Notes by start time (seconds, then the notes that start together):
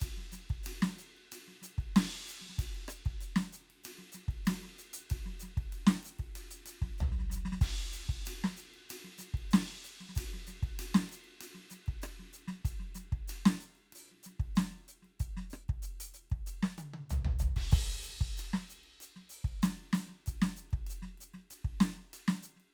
0.01 kick, hi-hat pedal, ride
0.18 snare
0.32 snare, hi-hat pedal, ride
0.50 kick, ride
0.64 hi-hat pedal, ride
0.83 snare
0.99 hi-hat pedal, ride
1.17 ride
1.32 hi-hat pedal, ride
1.48 snare
1.62 snare, hi-hat pedal, ride
1.79 kick, ride
1.96 snare, hi-hat pedal, ride
2.28 hi-hat pedal, ride
2.42 snare
2.50 snare
2.59 kick, hi-hat pedal, ride
2.75 ride
2.89 cross-stick, hi-hat pedal
3.06 kick, ride
3.21 hi-hat pedal, ride
3.36 snare
3.53 hi-hat pedal, ride
3.71 ride
3.84 hi-hat pedal, ride
3.99 snare
4.13 snare, hi-hat pedal, ride
4.29 kick, ride
4.46 snare, hi-hat pedal, ride
4.63 snare
4.79 hi-hat pedal, ride
4.94 open hi-hat
5.10 kick, hi-hat pedal, ride
5.26 snare
5.40 snare, hi-hat pedal, ride
5.58 kick, ride
5.72 hi-hat pedal, ride
5.87 snare
6.04 hi-hat pedal, ride
6.19 kick, ride
6.36 hi-hat pedal, ride
6.51 open hi-hat
6.66 hi-hat pedal, ride
6.82 kick, snare
6.99 floor tom, hi-hat pedal
7.12 snare
7.20 snare
7.24 snare
7.30 kick, snare, hi-hat pedal
7.36 snare
7.46 snare
7.53 snare
7.62 kick, hi-hat pedal, ride
7.93 hi-hat pedal, ride
8.09 kick, ride
8.26 hi-hat pedal, ride
8.44 snare
8.57 hi-hat pedal, ride
8.74 ride
8.90 hi-hat pedal, ride
9.05 snare
9.19 snare, hi-hat pedal, ride
9.34 kick, ride
9.51 snare, hi-hat pedal, ride
9.72 snare
9.85 hi-hat pedal, ride
10.01 snare
10.09 snare
10.16 kick, hi-hat pedal, ride
10.34 snare
10.47 snare, hi-hat pedal, ride
10.63 kick, ride
10.80 hi-hat pedal, ride
10.95 snare
11.10 hi-hat pedal, ride
11.25 ride
11.41 hi-hat pedal, ride
11.55 snare
11.70 snare, hi-hat pedal, ride
11.87 kick, ride
12.02 cross-stick, hi-hat pedal, ride
12.20 snare
12.34 hi-hat pedal, ride
12.48 snare, ride
12.65 kick, hi-hat pedal, ride bell
12.80 snare
12.95 snare, hi-hat pedal, ride
13.13 kick, ride
13.28 hi-hat pedal, ride bell
13.46 snare
13.61 hi-hat pedal
13.76 ride
13.93 hi-hat pedal, ride
14.12 snare
14.24 snare, hi-hat pedal, ride
14.40 kick, ride
14.56 snare, hi-hat pedal, ride bell
14.71 snare
14.74 snare
14.89 hi-hat pedal, ride
15.03 snare, ride
15.20 kick, hi-hat pedal, ride bell
15.37 snare
15.51 cross-stick, hi-hat pedal, ride
15.69 kick, ride
15.83 hi-hat pedal, ride bell
16.01 open hi-hat
16.14 hi-hat pedal, ride
16.31 kick, ride
16.47 hi-hat pedal, ride bell
16.63 snare
16.78 hi-hat pedal, high tom
16.94 high tom
17.10 floor tom, hi-hat pedal
17.25 floor tom
17.39 floor tom, hi-hat pedal
17.57 kick, ride
17.72 kick, hi-hat pedal, crash
18.04 hi-hat pedal
18.10 ride
18.21 kick, ride
18.38 hi-hat pedal, ride bell
18.54 snare
18.69 hi-hat pedal, ride
18.84 ride
19.01 hi-hat pedal, ride bell
19.16 snare
19.30 hi-hat pedal, ride
19.45 kick, ride
19.63 snare, hi-hat pedal, ride
19.93 snare, hi-hat pedal, ride bell
20.09 snare
20.27 kick, hi-hat pedal, ride
20.42 snare
20.57 hi-hat pedal
20.71 kick, ride
20.87 hi-hat pedal, ride bell
21.03 snare
21.18 snare, hi-hat pedal, ride
21.34 snare, ride
21.51 hi-hat pedal, ride
21.65 kick
21.81 snare, hi-hat pedal
21.97 snare
22.14 hi-hat pedal, ride bell
22.28 snare
22.43 hi-hat pedal, ride
22.57 snare, ride